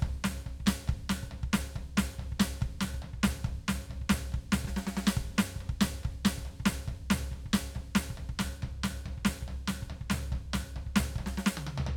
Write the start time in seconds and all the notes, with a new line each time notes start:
0.01 kick, snare, floor tom
0.24 snare, floor tom
0.46 kick, floor tom
0.60 kick
0.66 snare, floor tom
0.88 kick, floor tom
1.09 snare, floor tom
1.23 kick
1.31 floor tom
1.43 kick
1.53 snare, floor tom
1.75 kick, snare, floor tom
1.97 snare, floor tom
2.19 kick, floor tom
2.32 kick
2.40 snare, floor tom
2.61 kick, floor tom
2.81 snare, floor tom
2.94 kick
3.02 floor tom
3.13 kick
3.23 snare, floor tom
3.44 kick, snare, floor tom
3.68 snare, floor tom
3.90 kick, floor tom
4.02 kick
4.09 snare, floor tom
4.28 snare
4.32 kick, floor tom
4.52 snare, floor tom
4.65 kick, snare
4.76 snare
4.87 snare
5.07 snare
5.17 kick
5.38 snare, floor tom
5.47 snare
5.56 kick
5.61 floor tom
5.69 kick
5.81 snare, floor tom
6.00 snare, floor tom
6.05 kick
6.25 snare, floor tom
6.38 kick, snare
6.45 floor tom
6.60 kick
6.66 snare, floor tom
6.88 kick, floor tom
7.10 snare, floor tom
7.32 kick, floor tom
7.46 kick
7.53 snare, floor tom
7.73 kick, snare, floor tom
7.95 snare, floor tom
8.10 kick
8.15 snare, floor tom
8.29 kick
8.39 snare, floor tom
8.62 kick, floor tom
8.84 snare, floor tom
9.05 kick, floor tom
9.18 kick
9.25 snare, floor tom
9.42 kick
9.48 floor tom
9.68 snare, floor tom
9.82 kick
9.90 floor tom
10.01 kick
10.10 snare, floor tom
10.32 kick, floor tom
10.53 snare, floor tom
10.76 kick, floor tom
10.87 kick
10.96 snare, floor tom
11.16 kick, floor tom
11.26 snare
11.38 snare
11.46 snare
11.57 high tom
11.67 high tom
11.78 floor tom
11.87 floor tom